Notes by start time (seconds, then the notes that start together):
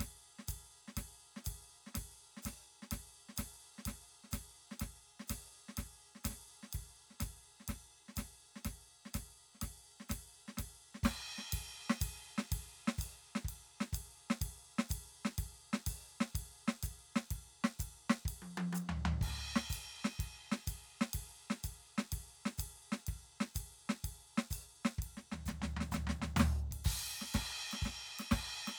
0.01 kick, snare, ride
0.39 snare
0.48 kick, hi-hat pedal, ride
0.89 snare
0.94 kick, hi-hat pedal, ride
0.98 snare
1.37 snare
1.45 kick, hi-hat pedal, ride
1.87 snare
1.95 kick, snare, ride
2.38 snare
2.43 kick, snare, hi-hat pedal, ride
2.83 snare
2.92 kick, snare, ride
3.30 snare
3.37 kick, snare, hi-hat pedal, ride
3.79 snare
3.86 kick, snare, ride
4.25 snare
4.32 kick, snare, hi-hat pedal, ride
4.72 snare
4.78 snare, hi-hat pedal, ride
4.82 kick
5.20 snare
5.28 kick, snare, hi-hat pedal, ride
5.69 snare
5.78 kick, snare, ride
6.16 snare
6.25 kick, snare, hi-hat pedal, ride
6.31 snare
6.64 snare
6.71 hi-hat pedal, ride
6.75 kick
7.11 snare
7.21 kick, snare, hi-hat pedal, ride
7.61 snare
7.69 kick, snare, ride
8.09 snare
8.17 kick, snare, hi-hat pedal, ride
8.57 snare
8.63 kick, snare, hi-hat pedal, ride
9.06 snare
9.14 kick, snare, hi-hat pedal, ride
9.55 snare
9.62 kick, snare, ride
10.01 snare
10.10 kick, snare, hi-hat pedal, ride
10.49 snare
10.57 kick, snare, hi-hat pedal, ride
10.95 snare
11.04 kick, snare, hi-hat pedal, ride
11.39 snare
11.53 kick, ride
11.90 snare
12.01 kick, hi-hat pedal, ride
12.39 snare
12.53 kick, ride
12.88 snare
12.99 kick, hi-hat pedal, ride
13.36 snare
13.45 kick
13.49 ride
13.81 snare
13.93 kick, hi-hat pedal, ride
14.31 snare
14.42 kick, ride
14.79 snare
14.90 kick, hi-hat pedal, ride
15.26 snare
15.39 kick, ride
15.74 snare
15.87 kick, hi-hat pedal, ride
16.21 snare
16.36 kick, ride
16.68 snare
16.83 kick, hi-hat pedal, ride
17.17 snare
17.31 kick, ride
17.65 snare
17.80 kick, hi-hat pedal, ride
18.11 snare
18.26 kick, ride
18.43 high tom
18.58 closed hi-hat, high tom
18.73 hi-hat pedal, high tom
18.90 floor tom
18.99 kick
19.06 floor tom
19.22 kick, ride
19.37 kick
19.57 snare
19.70 kick, hi-hat pedal, ride
20.05 snare
20.20 kick, ride
20.53 snare
20.68 kick, hi-hat pedal, ride
21.02 snare
21.14 kick, ride
21.51 snare
21.64 kick, hi-hat pedal, ride
21.99 snare
22.13 kick, ride
22.46 snare
22.58 kick, hi-hat pedal, ride
22.93 snare
23.07 kick, ride
23.41 snare
23.55 kick, hi-hat pedal, ride
23.90 snare
24.05 kick, ride
24.38 snare
24.51 kick, hi-hat pedal, ride
24.86 snare
24.99 kick, ride
25.18 snare
25.32 snare, floor tom
25.46 kick, snare, floor tom, hi-hat pedal
25.63 snare, floor tom
25.68 hi-hat pedal
25.77 snare, floor tom
25.92 kick, snare, floor tom, hi-hat pedal
26.08 snare, floor tom
26.22 snare, floor tom
26.37 snare, floor tom, hi-hat pedal
26.60 hi-hat pedal
26.72 kick, ride
26.85 kick, crash, ride
27.22 snare
27.35 kick, snare, ride
27.72 snare, ride
27.83 kick, snare, ride
28.20 snare, ride
28.32 kick, snare, ride
28.68 snare, ride